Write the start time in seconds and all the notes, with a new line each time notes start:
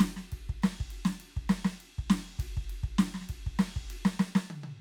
0.01 snare, ride
0.18 snare
0.33 kick, ride
0.50 kick
0.64 snare, ride
0.81 kick
0.92 ride
1.06 snare
1.21 ride
1.38 kick
1.51 snare, ride
1.66 snare
1.81 ride
2.00 kick
2.11 snare, ride
2.26 snare
2.30 snare
2.34 snare
2.40 kick, ride
2.58 kick
2.71 ride
2.85 kick
3.00 snare, ride
3.15 snare
3.22 snare
3.30 kick, ride
3.48 kick
3.60 snare, ride
3.77 kick
3.91 ride
3.98 kick
4.06 snare
4.21 snare
4.36 snare
4.51 high tom
4.65 high tom